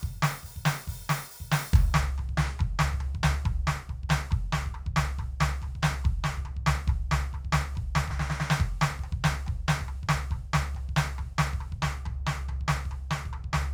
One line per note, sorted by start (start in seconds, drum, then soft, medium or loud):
0.01 open hi-hat medium
0.01 kick medium
0.22 open hi-hat loud
0.22 snare loud
0.43 open hi-hat medium
0.43 kick soft
0.43 snare soft
0.56 kick soft
0.65 open hi-hat loud
0.65 snare loud
0.87 open hi-hat medium
0.87 kick medium
1.09 open hi-hat loud
1.09 snare loud
1.30 open hi-hat medium
1.30 snare soft
1.40 kick soft
1.52 open hi-hat loud
1.52 snare loud
1.73 kick loud
1.73 snare soft
1.73 floor tom loud
1.94 snare loud
1.94 floor tom loud
2.18 kick soft
2.18 floor tom medium
2.37 snare loud
2.37 floor tom loud
2.57 kick medium
2.57 snare soft
2.57 floor tom medium
2.79 snare loud
2.79 floor tom loud
2.93 kick soft
3.00 floor tom medium
3.15 kick medium
3.23 snare loud
3.23 floor tom loud
3.44 kick medium
3.44 snare soft
3.44 floor tom medium
3.67 snare loud
3.67 floor tom loud
3.89 kick soft
3.89 floor tom soft
4.03 kick soft
4.09 snare loud
4.09 floor tom loud
4.31 kick medium
4.31 floor tom medium
4.52 snare loud
4.52 floor tom medium
4.66 kick soft
4.74 floor tom medium
4.86 kick medium
4.96 snare loud
4.96 floor tom loud
5.18 kick medium
5.18 snare soft
5.18 floor tom medium
5.40 snare loud
5.40 floor tom loud
5.62 kick soft
5.62 floor tom medium
5.75 kick soft
5.83 snare loud
5.83 floor tom loud
6.04 kick medium
6.04 floor tom medium
6.24 snare loud
6.24 floor tom loud
6.37 kick soft
6.45 floor tom medium
6.56 kick soft
6.66 snare loud
6.66 floor tom loud
6.87 kick medium
6.87 snare soft
6.87 floor tom medium
7.11 snare loud
7.11 floor tom loud
7.33 kick soft
7.33 floor tom medium
7.44 kick soft
7.52 snare loud
7.52 floor tom loud
7.71 snare soft
7.75 kick medium
7.75 floor tom medium
7.95 snare loud
7.95 floor tom loud
8.07 kick medium
8.07 snare medium
8.19 snare loud
8.30 snare loud
8.50 snare loud
8.60 kick medium
8.81 snare loud
8.81 floor tom medium
8.89 snare soft
8.99 kick soft
9.04 floor tom soft
9.12 kick medium
9.24 snare loud
9.24 floor tom loud
9.43 snare soft
9.43 floor tom soft
9.48 kick medium
9.68 snare loud
9.68 floor tom loud
9.81 kick soft
9.81 snare soft
9.88 floor tom medium
10.03 kick soft
10.09 snare loud
10.09 floor tom loud
10.31 kick medium
10.31 floor tom medium
10.53 snare loud
10.53 floor tom loud
10.74 kick soft
10.74 floor tom soft
10.89 kick soft
10.96 snare loud
10.96 floor tom loud
11.16 kick soft
11.16 snare soft
11.16 floor tom medium
11.38 snare loud
11.38 floor tom loud
11.53 kick medium
11.58 snare soft
11.58 floor tom medium
11.72 kick medium
11.82 snare loud
11.82 floor tom loud
12.05 kick medium
12.05 floor tom medium
12.27 snare loud
12.27 floor tom loud
12.48 kick soft
12.48 floor tom medium
12.61 kick soft
12.68 snare loud
12.68 floor tom loud
12.85 kick soft
12.91 floor tom medium
13.11 snare medium
13.11 floor tom medium
13.25 kick soft
13.33 floor tom medium
13.44 kick soft
13.53 snare loud
13.53 floor tom loud